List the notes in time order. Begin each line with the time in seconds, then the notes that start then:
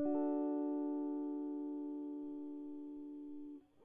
0.00 D4
0.06 F#4
0.16 A4